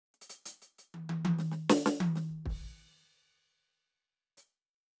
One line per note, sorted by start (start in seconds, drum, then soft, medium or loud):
0.14 closed hi-hat soft
0.21 closed hi-hat medium
0.30 closed hi-hat medium
0.46 closed hi-hat loud
0.62 closed hi-hat medium
0.78 closed hi-hat medium
0.94 high tom medium
1.09 high tom medium
1.25 high tom loud
1.39 snare medium
1.52 snare soft
1.70 snare loud
1.86 snare medium
2.00 high tom loud
2.15 snare medium
2.29 kick soft
2.46 kick medium
2.46 crash soft
4.37 hi-hat pedal soft